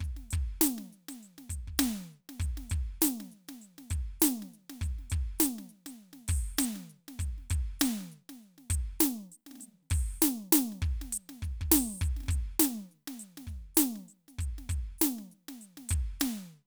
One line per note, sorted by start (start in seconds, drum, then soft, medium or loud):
0.01 kick soft
0.01 closed hi-hat soft
0.17 snare soft
0.31 open hi-hat medium
0.31 kick medium
0.61 closed hi-hat loud
0.61 snare loud
0.61 hi-hat pedal medium
0.79 snare soft
0.93 closed hi-hat soft
1.09 closed hi-hat medium
1.09 snare soft
1.23 closed hi-hat soft
1.39 snare soft
1.50 closed hi-hat medium
1.50 kick soft
1.68 kick soft
1.79 closed hi-hat loud
1.79 snare loud
1.79 hi-hat pedal medium
2.01 snare soft
2.12 closed hi-hat soft
2.29 snare soft
2.29 closed hi-hat soft
2.40 closed hi-hat medium
2.40 kick medium
2.58 snare soft
2.70 open hi-hat medium
2.70 kick medium
3.02 closed hi-hat loud
3.02 snare loud
3.02 hi-hat pedal medium
3.21 snare soft
3.32 closed hi-hat soft
3.49 snare soft
3.49 closed hi-hat soft
3.62 closed hi-hat soft
3.79 snare soft
3.91 closed hi-hat medium
3.91 kick medium
4.20 closed hi-hat loud
4.20 snare loud
4.20 hi-hat pedal medium
4.28 snare soft
4.43 snare soft
4.54 closed hi-hat soft
4.70 snare soft
4.82 closed hi-hat medium
4.82 kick medium
4.99 snare soft
5.10 closed hi-hat medium
5.10 kick medium
5.39 closed hi-hat loud
5.39 snare loud
5.39 hi-hat pedal medium
5.59 snare soft
5.70 closed hi-hat soft
5.87 closed hi-hat medium
5.87 snare soft
6.00 closed hi-hat soft
6.13 snare soft
6.29 open hi-hat medium
6.29 kick medium
6.58 closed hi-hat loud
6.58 snare loud
6.58 hi-hat pedal medium
6.76 snare soft
6.90 closed hi-hat soft
7.09 snare soft
7.20 closed hi-hat medium
7.20 kick medium
7.38 snare soft
7.50 open hi-hat loud
7.50 kick medium
7.80 closed hi-hat loud
7.80 snare loud
7.80 hi-hat pedal medium
8.01 snare soft
8.12 closed hi-hat soft
8.30 snare soft
8.30 closed hi-hat soft
8.43 closed hi-hat soft
8.58 snare soft
8.71 closed hi-hat loud
8.71 kick medium
9.00 closed hi-hat loud
9.00 snare loud
9.00 hi-hat pedal medium
9.32 closed hi-hat medium
9.47 snare soft
9.47 closed hi-hat soft
9.52 snare soft
9.56 snare soft
9.60 closed hi-hat medium
9.60 snare soft
9.83 snare soft
9.91 open hi-hat medium
9.91 kick medium
10.22 closed hi-hat loud
10.22 snare loud
10.22 hi-hat pedal medium
10.53 closed hi-hat loud
10.53 snare loud
10.72 snare soft
10.82 kick medium
10.82 closed hi-hat soft
11.02 snare soft
11.13 closed hi-hat loud
11.30 snare soft
11.43 kick soft
11.43 closed hi-hat soft
11.62 kick soft
11.72 open hi-hat loud
11.72 snare loud
12.00 kick medium
12.00 hi-hat pedal medium
12.04 closed hi-hat medium
12.17 snare soft
12.21 snare soft
12.24 snare soft
12.27 kick medium
12.27 snare soft
12.31 closed hi-hat medium
12.31 snare soft
12.60 closed hi-hat loud
12.60 snare loud
12.65 snare medium
12.92 closed hi-hat soft
13.08 snare medium
13.20 closed hi-hat medium
13.38 snare soft
13.47 kick soft
13.47 closed hi-hat soft
13.75 closed hi-hat loud
13.75 snare loud
13.75 hi-hat pedal soft
13.96 snare soft
14.09 closed hi-hat soft
14.29 snare soft
14.29 closed hi-hat soft
14.39 closed hi-hat medium
14.39 kick medium
14.59 snare soft
14.70 open hi-hat medium
14.70 kick medium
14.99 closed hi-hat medium
14.99 snare loud
14.99 hi-hat pedal medium
15.19 snare soft
15.32 closed hi-hat soft
15.49 snare soft
15.49 closed hi-hat soft
15.62 closed hi-hat medium
15.78 snare soft
15.89 closed hi-hat loud
15.89 kick medium
16.20 closed hi-hat medium
16.20 snare loud
16.20 hi-hat pedal medium
16.36 closed hi-hat soft